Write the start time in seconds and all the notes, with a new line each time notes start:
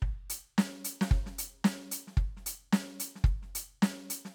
0.03 kick
0.31 closed hi-hat
0.59 snare
0.86 closed hi-hat
1.02 snare
1.12 kick, closed hi-hat
1.27 snare
1.39 closed hi-hat
1.65 snare
1.92 closed hi-hat
2.08 snare
2.18 kick, closed hi-hat
2.38 snare
2.47 closed hi-hat
2.74 snare
3.01 closed hi-hat
3.16 snare
3.25 kick, closed hi-hat
3.43 snare
3.56 closed hi-hat
3.83 snare
4.11 closed hi-hat
4.26 snare